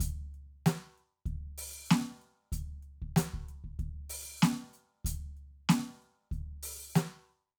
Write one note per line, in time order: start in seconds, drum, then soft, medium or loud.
0.01 closed hi-hat loud
0.01 kick medium
0.35 closed hi-hat soft
0.67 closed hi-hat medium
0.67 snare loud
0.99 closed hi-hat soft
1.27 kick medium
1.27 closed hi-hat soft
1.59 open hi-hat loud
1.90 snare loud
1.90 closed hi-hat soft
1.90 hi-hat pedal medium
2.23 closed hi-hat soft
2.53 closed hi-hat medium
2.53 kick medium
2.83 closed hi-hat soft
3.03 kick medium
3.17 closed hi-hat loud
3.17 snare loud
3.35 kick medium
3.49 closed hi-hat soft
3.65 kick soft
3.80 kick medium
3.80 closed hi-hat soft
4.11 open hi-hat loud
4.43 closed hi-hat medium
4.43 snare loud
4.43 hi-hat pedal medium
4.74 closed hi-hat soft
5.06 closed hi-hat loud
5.06 kick medium
5.38 closed hi-hat soft
5.70 closed hi-hat medium
5.70 snare loud
6.03 closed hi-hat soft
6.32 closed hi-hat soft
6.32 kick medium
6.64 open hi-hat loud
6.96 closed hi-hat medium
6.96 snare loud
6.96 hi-hat pedal medium